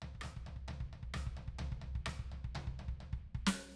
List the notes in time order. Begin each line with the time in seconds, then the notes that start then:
0.01 floor tom
0.15 kick
0.21 cross-stick, floor tom
0.36 kick
0.46 floor tom
0.56 kick
0.68 floor tom, high tom
0.80 kick
0.93 floor tom
1.03 kick
1.14 cross-stick, floor tom
1.26 kick
1.37 floor tom
1.48 kick
1.58 floor tom, high tom
1.72 kick
1.81 floor tom
1.95 kick
2.06 cross-stick, floor tom
2.19 kick
2.32 floor tom
2.44 kick
2.55 floor tom, high tom
2.67 kick
2.79 floor tom
2.88 kick
3.00 floor tom
3.13 kick
3.35 kick
3.47 snare, ride
3.71 hi-hat pedal